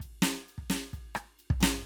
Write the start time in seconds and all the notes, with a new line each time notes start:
0.00 kick, ride
0.22 snare, ride
0.48 ride
0.58 kick
0.70 snare, ride
0.93 kick, ride
1.14 cross-stick, ride
1.24 snare
1.39 ride
1.50 kick
1.60 snare, floor tom